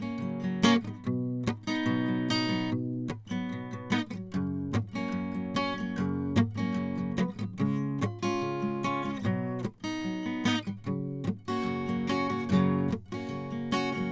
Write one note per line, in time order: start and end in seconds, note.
0.00 0.41 A#3
0.00 0.65 C#4
0.19 0.79 C#3
0.23 0.43 F#3
0.41 0.63 A#3
0.45 0.84 F#3
0.64 0.76 A#3
0.64 0.79 C#4
0.76 1.11 B3
0.85 1.09 D#4
1.08 1.50 B2
1.49 1.60 D#4
1.69 2.50 B3
1.85 2.72 B2
1.85 2.07 F#3
2.10 2.51 F#3
2.31 2.76 D#4
2.50 3.06 F#3
2.50 2.74 B3
2.73 3.17 B2
2.87 3.09 B3
3.32 3.99 F#3
3.32 4.06 B3
3.54 3.74 B2
3.74 4.00 B2
3.92 4.07 D#4
4.15 4.41 F#3
4.33 5.11 F#2
4.33 4.79 C#3
4.96 5.32 F#3
4.96 5.78 A#3
4.96 5.57 C#4
5.13 5.97 F#2
5.36 5.79 F#3
5.57 5.74 C#4
5.75 6.49 C#4
5.80 5.99 F#3
5.80 6.49 A#3
5.97 6.73 F#2
5.97 6.44 C#3
6.57 6.97 F#3
6.57 7.27 A#3
6.57 7.16 C#4
6.74 7.19 F#2
6.78 6.98 C#3
6.99 7.32 C#3
6.99 7.06 F#3
7.59 8.08 C#3
7.59 8.01 G#3
8.06 8.19 F4
8.23 8.59 G#3
8.23 8.85 C#4
8.23 8.85 F4
8.40 9.19 C#3
8.61 9.06 G#3
8.85 9.01 C#4
8.85 9.19 F4
9.01 9.18 C#4
9.07 9.20 G#3
9.18 9.64 B3
9.26 9.72 B2
9.26 9.62 F#3
9.85 10.25 B3
9.85 10.47 D#4
10.03 10.56 F#3
10.27 10.46 B3
10.46 10.61 B3
10.46 10.65 D#4
10.85 11.35 C#3
10.85 11.24 F#3
11.26 11.37 F#3
11.49 11.88 A#3
11.49 12.09 C#4
11.49 12.10 F#4
11.63 12.50 F#2
11.68 12.51 C#3
11.90 12.52 F#3
11.90 12.08 A#3
12.08 12.29 A#3
12.08 12.30 C#4
12.08 12.29 F#4
12.31 12.55 A#3
12.31 12.91 C#4
12.31 12.49 F#4
12.50 14.12 F#2
12.50 12.97 C#3
12.54 12.98 F#3
12.54 13.00 A#3
13.13 13.52 A#3
13.13 13.73 C#4
13.13 13.73 F#4
13.28 14.12 C#3
13.32 13.45 F#3
13.52 13.94 A#3
13.73 13.94 C#4
13.73 13.91 F#4
13.91 14.12 A#3
13.91 14.12 C#4
13.91 14.12 F#4
13.99 14.12 F#3